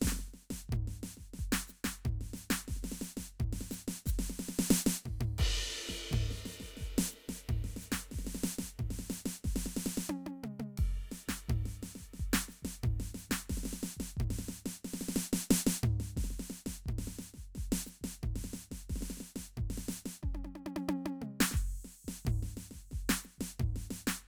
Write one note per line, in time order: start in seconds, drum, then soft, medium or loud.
0.01 kick soft
0.01 snare soft
0.01 snare medium
0.07 snare medium
0.12 snare soft
0.16 snare soft
0.19 snare soft
0.28 snare soft
0.34 snare soft
0.42 snare soft
0.50 kick soft
0.50 snare medium
0.69 kick soft
0.69 floor tom medium
0.87 snare soft
1.02 snare soft
1.02 hi-hat pedal soft
1.17 kick soft
1.17 snare soft
1.34 snare soft
1.39 kick soft
1.52 snare medium
1.67 snare soft
1.67 hi-hat pedal medium
1.84 kick soft
1.84 snare medium
2.05 kick soft
2.05 floor tom medium
2.21 snare soft
2.33 snare soft
2.33 hi-hat pedal medium
2.50 kick soft
2.50 snare medium
2.68 kick soft
2.68 snare soft
2.76 snare soft
2.83 snare soft
2.92 snare soft
3.01 snare medium
3.01 hi-hat pedal medium
3.17 kick soft
3.17 snare medium
3.40 kick soft
3.40 floor tom medium
3.53 snare soft
3.61 snare soft
3.71 snare medium
3.71 hi-hat pedal medium
3.88 snare medium
4.06 kick medium
4.06 snare soft
4.06 hi-hat pedal loud
4.16 kick soft
4.16 snare medium
4.30 snare soft
4.39 snare medium
4.49 snare soft
4.59 snare medium
4.71 snare loud
4.71 hi-hat pedal medium
4.86 snare loud
5.05 kick soft
5.05 floor tom medium
5.21 floor tom medium
5.38 kick medium
5.38 ride loud
5.74 snare soft
5.89 kick soft
5.89 snare soft
6.11 kick soft
6.11 floor tom loud
6.31 snare soft
6.46 snare soft
6.46 hi-hat pedal soft
6.60 kick soft
6.60 snare soft
6.77 snare soft
6.81 kick soft
6.98 snare loud
7.10 snare soft
7.10 hi-hat pedal medium
7.29 kick soft
7.29 snare medium
7.49 kick soft
7.49 floor tom medium
7.64 snare soft
7.76 snare soft
7.81 hi-hat pedal medium
7.92 kick soft
7.92 snare medium
8.11 kick soft
8.11 snare soft
8.19 snare soft
8.25 snare soft
8.27 snare soft
8.44 snare medium
8.44 hi-hat pedal medium
8.59 kick soft
8.59 snare medium
8.79 kick soft
8.79 floor tom medium
8.90 snare soft
8.99 snare soft
9.10 snare medium
9.10 hi-hat pedal medium
9.26 snare medium
9.44 kick soft
9.44 snare soft
9.53 kick soft
9.53 snare medium
9.77 snare medium
9.86 snare medium
9.97 snare medium
10.09 high tom loud
10.26 high tom medium
10.44 mid tom medium
10.60 mid tom medium
10.78 kick medium
10.78 ride loud
11.12 snare soft
11.12 hi-hat pedal soft
11.28 kick soft
11.28 snare medium
11.49 kick soft
11.49 floor tom loud
11.66 snare soft
11.82 snare soft
11.82 hi-hat pedal soft
11.95 snare soft
12.00 kick soft
12.14 snare soft
12.20 kick soft
12.33 snare loud
12.48 snare soft
12.48 hi-hat pedal soft
12.62 kick soft
12.62 snare medium
12.83 kick soft
12.83 floor tom medium
13.00 snare soft
13.14 snare soft
13.14 hi-hat pedal medium
13.30 kick soft
13.30 snare medium
13.50 kick soft
13.50 snare medium
13.57 snare soft
13.63 snare soft
13.65 snare medium
13.73 snare soft
13.82 snare medium
13.82 hi-hat pedal soft
13.97 kick soft
13.97 snare medium
14.17 kick soft
14.17 floor tom medium
14.30 snare soft
14.39 snare soft
14.48 snare soft
14.48 hi-hat pedal soft
14.66 snare medium
14.85 snare soft
14.94 snare medium
15.01 snare medium
15.09 snare medium
15.16 snare medium
15.33 snare medium
15.51 snare loud
15.67 snare loud
15.83 floor tom loud
16.00 snare soft
16.17 kick soft
16.17 snare soft
16.24 snare soft
16.30 snare soft
16.39 snare soft
16.50 snare soft
16.66 kick soft
16.66 snare medium
16.86 kick soft
16.86 floor tom medium
16.98 snare soft
17.07 snare soft
17.19 snare soft
17.19 hi-hat pedal soft
17.34 kick soft
17.34 snare soft
17.55 kick soft
17.55 snare soft
17.72 snare medium
17.85 snare soft
17.85 hi-hat pedal medium
18.01 kick soft
18.01 snare medium
18.23 kick soft
18.23 floor tom medium
18.36 snare soft
18.44 snare soft
18.53 snare soft
18.53 hi-hat pedal soft
18.71 kick soft
18.71 snare soft
18.90 kick soft
18.90 snare soft
18.96 snare soft
19.01 snare soft
19.10 snare soft
19.17 snare soft
19.20 snare soft
19.25 hi-hat pedal soft
19.36 kick soft
19.36 snare medium
19.57 kick soft
19.57 floor tom medium
19.70 snare soft
19.78 snare soft
19.88 snare medium
19.88 hi-hat pedal medium
20.06 snare medium
20.23 kick soft
20.23 high tom soft
20.35 high tom medium
20.45 high tom medium
20.55 high tom medium
20.66 high tom medium
20.76 open hi-hat soft
20.76 high tom loud
20.89 high tom loud
21.06 high tom loud
21.22 mid tom medium
21.40 snare loud
21.51 kick medium
21.51 snare soft
21.57 crash medium
21.85 snare soft
22.04 kick soft
22.04 snare medium
22.25 kick soft
22.25 floor tom loud
22.43 snare soft
22.56 snare soft
22.56 hi-hat pedal soft
22.71 kick soft
22.71 snare soft
22.91 kick soft
22.91 snare soft
23.09 snare loud
23.21 snare soft
23.21 hi-hat pedal soft
23.38 kick soft
23.38 snare medium
23.60 kick soft
23.60 floor tom medium
23.76 snare soft
23.91 snare medium
23.91 hi-hat pedal soft
24.07 kick soft
24.07 snare medium